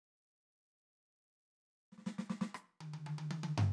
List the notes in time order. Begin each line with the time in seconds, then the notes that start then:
1.92 snare
1.98 snare
2.06 snare
2.18 snare
2.30 snare
2.41 snare
2.54 cross-stick
2.80 high tom
2.93 high tom
3.06 high tom
3.18 high tom
3.31 high tom
3.43 closed hi-hat, high tom
3.58 floor tom